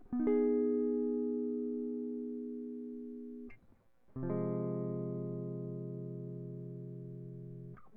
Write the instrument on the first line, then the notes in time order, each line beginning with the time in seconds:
electric guitar
0.13 B3
0.20 D#4
0.28 G#4
4.17 C3
4.24 F3
4.30 G#3